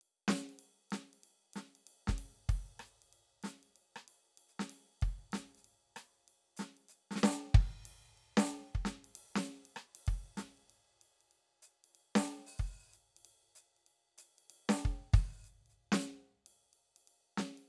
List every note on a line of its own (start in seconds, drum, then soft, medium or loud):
0.01 ride soft
0.28 snare loud
0.28 ride soft
0.49 ride soft
0.59 ride soft
0.91 snare medium
0.91 ride soft
1.13 ride soft
1.23 ride soft
1.53 snare soft
1.53 ride soft
1.75 ride soft
1.87 ride soft
2.07 kick medium
2.07 snare medium
2.18 ride medium
2.49 kick medium
2.49 ride medium
2.79 cross-stick medium
2.79 ride soft
2.85 hi-hat pedal soft
3.02 ride soft
3.13 ride soft
3.43 snare medium
3.43 ride soft
3.47 hi-hat pedal medium
3.63 ride soft
3.76 ride soft
3.96 cross-stick medium
4.08 ride soft
4.38 ride soft
4.49 hi-hat pedal soft
4.59 snare medium
4.70 ride soft
5.02 kick medium
5.02 ride soft
5.32 snare medium
5.32 ride soft
5.37 hi-hat pedal soft
5.55 hi-hat pedal soft
5.55 ride soft
5.64 ride soft
5.96 cross-stick medium
5.96 hi-hat pedal soft
5.96 ride soft
6.28 ride soft
6.57 snare medium
6.57 hi-hat pedal medium
6.57 ride soft
6.77 ride soft
6.89 hi-hat pedal soft
6.89 ride soft
7.11 snare medium
7.16 snare medium
7.16 hi-hat pedal soft
7.23 snare loud
7.54 kick loud
7.54 crash soft
7.85 ride medium
8.06 ride soft
8.18 ride soft
8.37 snare loud
8.51 ride soft
8.75 kick medium
8.85 snare medium
9.04 ride soft
9.15 ride medium
9.36 snare medium
9.43 hi-hat pedal soft
9.47 ride soft
9.65 ride soft
9.76 cross-stick medium
9.95 ride medium
10.07 kick medium
10.07 ride medium
10.37 snare medium
10.37 hi-hat pedal soft
10.37 ride soft
10.58 ride soft
10.70 ride soft
11.01 ride soft
11.21 ride soft
11.31 ride soft
11.62 hi-hat pedal soft
11.62 ride soft
11.84 ride soft
11.95 ride soft
12.15 snare loud
12.19 hi-hat pedal soft
12.28 ride soft
12.46 open hi-hat medium
12.59 kick medium
12.59 ride soft
12.93 hi-hat pedal soft
12.93 ride soft
13.17 ride soft
13.25 ride soft
13.55 hi-hat pedal soft
13.55 ride soft
13.77 ride soft
13.86 ride soft
14.18 hi-hat pedal soft
14.18 ride soft
14.38 ride soft
14.50 ride soft
14.68 snare medium
14.68 hi-hat pedal soft
14.80 ride bell soft
14.85 kick medium
15.13 open hi-hat medium
15.13 kick loud
15.13 ride bell soft
15.44 hi-hat pedal soft
15.44 ride soft
15.66 hi-hat pedal soft
15.66 ride soft
15.92 snare loud
16.00 hi-hat pedal soft
16.46 ride soft
16.73 ride soft
16.96 ride soft
17.08 ride soft
17.38 snare medium
17.38 ride soft
17.58 ride soft